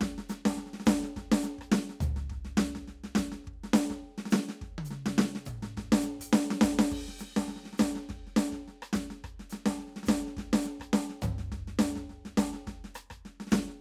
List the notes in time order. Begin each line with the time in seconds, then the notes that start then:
0.01 kick, snare
0.08 kick
0.18 snare
0.29 snare, hi-hat pedal
0.45 kick, snare
0.57 snare
0.66 snare
0.73 snare
0.80 snare
0.86 kick, snare, hi-hat pedal
0.91 snare
1.03 snare
1.16 kick, snare
1.23 kick
1.32 snare
1.42 snare, hi-hat pedal
1.58 kick, cross-stick
1.72 snare
1.89 snare
2.00 kick, floor tom, hi-hat pedal
2.07 kick
2.09 kick
2.16 snare
2.30 kick, snare
2.36 kick
2.45 snare
2.57 snare, hi-hat pedal
2.75 kick, snare
2.88 snare
3.04 snare
3.15 kick, snare, hi-hat pedal
3.32 snare
3.44 kick, snare
3.53 kick
3.64 snare
3.74 snare, hi-hat pedal
3.90 kick, snare
4.02 snare
4.12 snare
4.18 snare
4.26 snare
4.31 snare, hi-hat pedal
4.49 snare
4.62 kick, snare
4.68 kick
4.78 high tom
4.85 hi-hat pedal
4.91 snare
5.06 kick, snare
5.18 snare
5.35 snare
5.46 kick, hi-hat pedal, mid tom
5.54 kick
5.63 snare
5.77 kick, snare
5.83 kick
5.92 snare
6.01 snare, hi-hat pedal
6.20 open hi-hat, kick
6.33 snare
6.51 snare
6.61 kick, snare, hi-hat pedal
6.70 kick
6.72 kick
6.79 snare
6.91 kick, crash
6.99 kick
7.05 kick, snare
7.19 snare, hi-hat pedal
7.37 kick, snare
7.48 snare
7.56 snare
7.63 snare
7.66 snare
7.73 snare
7.78 kick, snare, hi-hat pedal
7.87 kick
7.95 snare
8.09 kick, snare
8.16 kick
8.21 kick
8.27 snare
8.37 snare, hi-hat pedal
8.52 kick, snare
8.68 snare
8.82 cross-stick
8.93 kick, snare, hi-hat pedal
9.10 snare
9.24 kick, cross-stick
9.30 kick
9.40 snare
9.50 snare, hi-hat pedal
9.66 kick, snare
9.79 snare
9.87 snare
9.93 snare
9.96 snare
10.03 kick, snare, hi-hat pedal
10.09 snare
10.13 kick
10.27 snare
10.37 kick, snare
10.43 kick
10.53 snare
10.62 snare, hi-hat pedal
10.80 kick, cross-stick
10.93 snare
11.10 snare
11.22 kick, hi-hat pedal, floor tom
11.30 kick
11.33 kick
11.38 snare
11.52 kick, snare
11.58 kick
11.68 snare
11.79 snare, hi-hat pedal
11.96 kick, snare
12.09 snare
12.25 snare
12.37 kick, snare, hi-hat pedal
12.53 snare
12.67 kick, snare
12.73 kick
12.84 snare
12.95 cross-stick, hi-hat pedal
13.10 kick, cross-stick
13.25 snare
13.40 snare
13.47 snare
13.51 kick, snare, hi-hat pedal
13.60 kick
13.68 snare